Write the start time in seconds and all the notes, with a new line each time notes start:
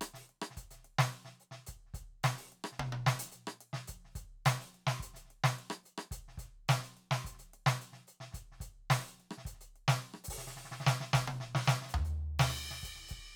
0.01 closed hi-hat, cross-stick
0.14 open hi-hat, snare
0.25 hi-hat pedal
0.29 closed hi-hat
0.42 cross-stick
0.51 snare
0.57 closed hi-hat, kick
0.62 kick
0.71 closed hi-hat, snare
0.75 snare
0.79 snare
0.84 closed hi-hat
0.99 snare
1.13 closed hi-hat
1.25 snare
1.40 open hi-hat, hi-hat pedal
1.51 snare
1.67 closed hi-hat, kick
1.86 snare
1.90 kick, snare
1.94 closed hi-hat
2.00 kick
2.03 kick
2.23 closed hi-hat, snare
2.35 open hi-hat, snare
2.47 hi-hat pedal
2.52 closed hi-hat
2.64 cross-stick
2.72 snare
2.79 kick, snare, high tom
2.84 kick
2.92 high tom
3.06 snare
3.15 snare
3.19 open hi-hat
3.26 snare
3.32 closed hi-hat
3.47 cross-stick
3.61 closed hi-hat
3.73 snare
3.88 closed hi-hat, kick
4.05 snare
4.09 snare, hi-hat pedal
4.15 closed hi-hat, kick
4.21 kick
4.24 kick
4.45 closed hi-hat, snare
4.57 open hi-hat, snare
4.69 hi-hat pedal
4.74 closed hi-hat
4.87 snare
4.97 kick, snare
5.03 closed hi-hat, kick
5.14 closed hi-hat, snare
5.19 snare
5.25 snare
5.30 closed hi-hat
5.44 snare
5.58 closed hi-hat
5.70 cross-stick
5.83 closed hi-hat, hi-hat pedal
5.98 cross-stick
6.11 closed hi-hat, kick
6.17 kick
6.20 kick
6.28 snare
6.34 kick, snare
6.38 closed hi-hat, snare
6.41 snare
6.46 kick
6.68 closed hi-hat, snare
6.80 closed hi-hat, snare
6.97 closed hi-hat
7.11 snare
7.25 closed hi-hat, kick
7.33 snare
7.37 closed hi-hat, snare
7.40 snare
7.46 snare
7.53 closed hi-hat
7.66 snare
7.81 closed hi-hat
7.93 snare
8.07 closed hi-hat, hi-hat pedal
8.20 snare
8.32 closed hi-hat, kick, snare
8.40 kick
8.52 snare
8.58 closed hi-hat, kick, snare
8.66 kick
8.69 kick
8.90 open hi-hat, snare
8.99 snare
9.06 open hi-hat
9.20 closed hi-hat
9.31 cross-stick
9.38 snare
9.45 closed hi-hat, kick
9.51 kick, snare
9.59 closed hi-hat, snare
9.76 closed hi-hat
9.88 snare
9.95 hi-hat pedal
10.02 closed hi-hat
10.14 cross-stick
10.24 hi-hat pedal
10.28 open hi-hat, kick
10.34 kick, snare
10.47 snare
10.56 snare
10.65 snare
10.72 snare
10.80 snare, hi-hat pedal
10.87 snare
11.00 snare
11.08 hi-hat pedal
11.13 kick, snare
11.28 high tom
11.40 snare
11.55 snare
11.65 snare, hi-hat pedal
11.81 snare
11.86 snare, hi-hat pedal
11.91 kick, floor tom
12.05 hi-hat pedal
12.39 snare, crash
12.47 snare
12.52 closed hi-hat
12.71 snare
12.83 closed hi-hat, kick
12.89 kick
12.96 snare
13.03 snare
13.08 closed hi-hat, kick
13.19 kick